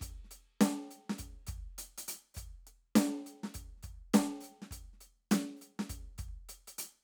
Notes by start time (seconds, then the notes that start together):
0.01 closed hi-hat, kick
0.07 kick
0.09 kick
0.24 snare
0.30 closed hi-hat, snare
0.61 closed hi-hat, snare
0.91 closed hi-hat
1.09 snare
1.18 closed hi-hat, kick
1.47 closed hi-hat, kick
1.54 kick
1.57 kick
1.78 closed hi-hat
1.98 closed hi-hat
2.08 closed hi-hat
2.34 closed hi-hat, kick, hi-hat pedal
2.67 closed hi-hat
2.95 closed hi-hat, snare
3.26 closed hi-hat
3.43 snare
3.54 closed hi-hat, kick
3.77 snare
3.83 closed hi-hat, kick
4.13 closed hi-hat, snare
4.25 snare
4.40 closed hi-hat, hi-hat pedal
4.62 snare
4.71 closed hi-hat, kick
4.93 snare
5.00 closed hi-hat
5.31 closed hi-hat, snare
5.56 hi-hat pedal
5.61 closed hi-hat
5.79 snare
5.89 closed hi-hat, kick
6.18 closed hi-hat, kick
6.28 kick
6.49 closed hi-hat
6.67 closed hi-hat
6.78 closed hi-hat